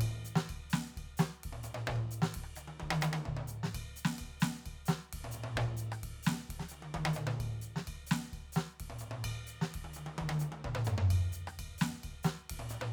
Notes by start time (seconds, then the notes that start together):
0.01 kick, ride bell
0.25 hi-hat pedal
0.36 snare
0.49 kick, ride bell
0.56 kick
0.70 snare, hi-hat pedal
0.97 kick, ride bell
1.03 kick
1.17 snare, hi-hat pedal
1.44 kick, ride
1.51 kick, mid tom
1.63 hi-hat pedal, mid tom
1.75 mid tom
1.87 kick, mid tom
1.96 mid tom
2.11 hi-hat pedal
2.22 snare
2.34 kick, ride
2.42 kick, cross-stick
2.56 hi-hat pedal, high tom
2.68 high tom
2.80 kick, high tom
2.91 high tom
3.01 hi-hat pedal, high tom
3.13 high tom
3.26 kick, mid tom
3.34 kick, mid tom
3.48 hi-hat pedal
3.63 snare
3.75 kick, ride bell
3.84 kick
3.96 hi-hat pedal
4.05 snare
4.18 kick, ride bell
4.40 snare, hi-hat pedal
4.66 kick, ride bell
4.86 snare, hi-hat pedal
5.13 kick, ride
5.19 kick
5.25 mid tom
5.31 hi-hat pedal, mid tom
5.44 mid tom
5.56 kick, mid tom
5.61 kick
5.66 mid tom
5.77 hi-hat pedal
5.92 cross-stick
6.03 kick, ride
6.09 kick
6.23 snare, hi-hat pedal
6.31 snare
6.50 kick, ride
6.60 snare
6.69 hi-hat pedal, high tom
6.83 high tom
6.94 kick, high tom
7.05 high tom
7.13 hi-hat pedal, mid tom
7.27 mid tom
7.40 kick, ride bell
7.62 hi-hat pedal
7.76 snare
7.87 kick, ride bell
8.07 hi-hat pedal
8.11 snare
8.33 kick, ride bell
8.52 snare, hi-hat pedal
8.80 kick, ride
8.87 kick, mid tom
8.99 hi-hat pedal, mid tom
9.24 kick, ride bell
9.47 hi-hat pedal, ride
9.62 snare
9.74 kick, ride
9.85 high tom
9.94 hi-hat pedal, high tom
10.06 high tom
10.18 kick, high tom
10.29 high tom
10.40 hi-hat pedal, high tom
10.52 high tom
10.65 kick, mid tom
10.72 kick, mid tom
10.85 floor tom, hi-hat pedal
10.98 floor tom
11.11 kick, ride bell
11.32 hi-hat pedal
11.47 cross-stick
11.59 kick, ride bell
11.65 kick
11.78 snare, hi-hat pedal
12.04 kick, ride bell
12.23 snare, hi-hat pedal
12.50 kick, ride
12.57 kick, mid tom
12.69 hi-hat pedal, mid tom
12.81 mid tom